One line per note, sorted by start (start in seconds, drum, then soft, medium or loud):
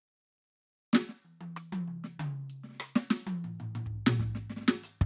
0.93 snare loud
0.95 snare loud
1.09 snare soft
1.25 high tom soft
1.41 high tom medium
1.57 cross-stick medium
1.73 high tom loud
1.88 mid tom soft
2.04 snare medium
2.20 mid tom loud
2.50 percussion medium
2.64 snare soft
2.69 snare soft
2.73 snare soft
2.76 snare soft
2.80 high tom loud
2.96 snare loud
3.11 snare loud
3.27 high tom loud
3.45 floor tom medium
3.60 floor tom medium
3.76 floor tom loud
3.86 kick soft
4.07 snare loud
4.07 floor tom loud
4.20 kick medium
4.20 snare soft
4.35 snare medium
4.50 snare medium
4.57 snare medium
4.61 snare soft
4.66 snare soft
4.68 snare loud
4.84 percussion loud
5.01 kick loud